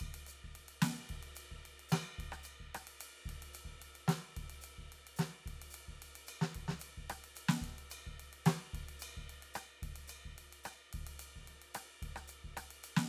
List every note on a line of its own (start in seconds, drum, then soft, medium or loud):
0.01 kick soft
0.01 ride bell medium
0.08 kick soft
0.15 ride medium
0.28 hi-hat pedal medium
0.28 ride soft
0.45 kick soft
0.55 snare soft
0.55 ride medium
0.69 ride medium
0.83 snare medium
0.83 hi-hat pedal medium
0.83 ride loud
1.10 kick soft
1.10 snare soft
1.10 ride soft
1.24 snare soft
1.24 ride soft
1.33 snare soft
1.33 hi-hat pedal soft
1.38 ride medium
1.53 kick soft
1.66 ride soft
1.81 ride soft
1.90 snare medium
1.90 hi-hat pedal medium
1.90 ride bell loud
2.20 kick soft
2.20 ride soft
2.25 kick soft
2.33 cross-stick medium
2.44 hi-hat pedal medium
2.44 ride bell medium
2.61 kick soft
2.76 cross-stick medium
2.76 ride medium
2.88 ride medium
3.01 hi-hat pedal soft
3.01 ride medium
3.27 kick soft
3.27 ride medium
3.43 ride medium
3.55 hi-hat pedal soft
3.55 ride medium
3.66 kick soft
3.83 ride medium
3.96 ride soft
4.09 snare medium
4.09 hi-hat pedal medium
4.09 ride medium
4.33 snare soft
4.38 kick soft
4.38 ride medium
4.44 kick soft
4.51 ride medium
4.62 hi-hat pedal soft
4.62 ride medium
4.79 kick soft
4.93 ride soft
5.08 ride soft
5.17 snare medium
5.17 hi-hat pedal medium
5.17 ride medium
5.47 kick soft
5.47 snare soft
5.47 ride soft
5.57 snare soft
5.61 snare soft
5.61 ride medium
5.71 hi-hat pedal medium
5.71 ride medium
5.89 kick soft
6.03 ride medium
6.17 ride medium
6.28 hi-hat pedal soft
6.28 ride bell medium
6.42 snare medium
6.56 kick soft
6.56 ride medium
6.69 snare medium
6.80 hi-hat pedal soft
6.80 ride medium
6.99 kick soft
7.11 cross-stick medium
7.11 ride medium
7.25 ride medium
7.36 hi-hat pedal soft
7.36 ride medium
7.50 snare medium
7.63 kick soft
7.63 ride medium
7.77 snare soft
7.77 ride soft
7.81 snare soft
7.84 snare soft
7.86 snare soft
7.90 snare soft
7.90 hi-hat pedal medium
7.90 ride bell medium
8.08 kick soft
8.21 ride medium
8.34 ride soft
8.46 snare loud
8.46 hi-hat pedal medium
8.46 ride medium
8.71 kick soft
8.71 snare soft
8.76 snare soft
8.76 ride medium
8.84 snare soft
8.90 ride medium
9.00 hi-hat pedal medium
9.00 ride bell medium
9.18 kick soft
9.31 ride medium
9.44 ride soft
9.55 cross-stick medium
9.55 hi-hat pedal medium
9.55 ride bell medium
9.84 kick soft
9.84 snare soft
9.84 ride medium
9.97 ride medium
10.09 hi-hat pedal medium
10.09 ride bell medium
10.26 kick soft
10.26 snare soft
10.29 snare soft
10.39 ride medium
10.54 ride soft
10.65 cross-stick medium
10.65 hi-hat pedal soft
10.65 ride bell medium
10.91 kick soft
10.91 snare soft
10.91 ride medium
11.01 kick soft
11.08 ride medium
11.20 hi-hat pedal medium
11.20 ride medium
11.37 kick soft
11.37 snare soft
11.46 snare soft
11.46 ride soft
11.50 snare soft
11.63 ride soft
11.75 cross-stick medium
11.75 hi-hat pedal medium
11.75 ride medium
12.03 kick soft
12.03 ride soft
12.17 cross-stick medium
12.29 hi-hat pedal medium
12.29 ride medium
12.45 kick soft
12.58 cross-stick medium
12.58 ride medium
12.72 ride medium
12.84 hi-hat pedal medium
12.84 ride medium
12.98 snare medium